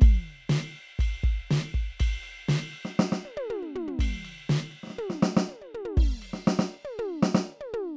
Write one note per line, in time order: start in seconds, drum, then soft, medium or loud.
0.01 kick loud
0.01 ride medium
0.49 snare loud
0.49 ride loud
0.99 kick medium
0.99 ride loud
1.24 kick medium
1.51 snare loud
1.51 ride loud
1.74 kick medium
2.00 kick medium
2.00 ride loud
2.23 ride medium
2.49 snare loud
2.49 ride loud
2.73 ride bell medium
2.85 snare medium
2.99 snare loud
3.12 snare medium
3.25 high tom medium
3.37 high tom loud
3.50 mid tom loud
3.62 mid tom soft
3.75 floor tom loud
3.87 floor tom medium
3.99 kick medium
3.99 ride loud
4.25 ride medium
4.49 snare loud
4.49 ride medium
4.71 ride soft
4.83 snare soft
4.87 snare soft
4.90 snare soft
4.98 mid tom loud
5.10 snare medium
5.23 snare loud
5.37 snare loud
5.49 high tom medium
5.61 high tom medium
5.74 mid tom loud
5.85 mid tom loud
5.97 kick medium
5.97 crash medium
6.22 ride medium
6.33 snare medium
6.47 snare loud
6.59 snare loud
6.84 high tom medium
6.99 mid tom loud
7.23 snare loud
7.35 snare loud
7.48 high tom soft
7.60 high tom medium
7.73 mid tom loud